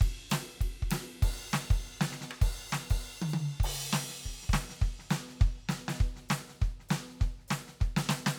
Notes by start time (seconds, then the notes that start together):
0.01 kick, ride
0.30 snare, hi-hat pedal, ride
0.61 kick, ride
0.82 kick
0.90 snare, hi-hat pedal, ride
0.95 kick
1.22 kick, crash
1.51 snare, hi-hat pedal
1.70 kick, crash
2.01 snare
2.10 snare, hi-hat pedal
2.21 snare
2.31 cross-stick
2.42 kick, crash
2.70 snare, hi-hat pedal
2.90 kick, crash
3.22 high tom
3.29 hi-hat pedal
3.34 high tom
3.60 kick, crash
3.93 snare, hi-hat pedal
4.09 snare
4.26 kick
4.43 snare
4.49 kick, hi-hat pedal
4.53 snare
4.70 snare
4.81 kick, snare
4.99 snare
5.10 snare, hi-hat pedal
5.29 snare
5.40 kick, snare
5.57 snare
5.69 snare, hi-hat pedal
5.88 snare
6.00 kick, snare
6.16 snare
6.29 snare, hi-hat pedal
6.49 snare
6.62 kick, snare
6.80 snare
6.89 snare, hi-hat pedal
7.09 snare
7.21 kick, snare
7.39 snare
7.48 snare, hi-hat pedal
7.67 snare
7.81 kick, snare
7.97 snare
8.08 snare, hi-hat pedal
8.26 snare